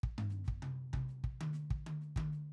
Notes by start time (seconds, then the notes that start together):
0.03 kick
0.18 floor tom
0.30 snare
0.44 kick, snare
0.62 mid tom
0.93 kick, mid tom
1.08 snare
1.24 kick
1.41 high tom
1.53 snare
1.71 kick
1.86 high tom
2.01 snare
2.16 kick, high tom
2.32 snare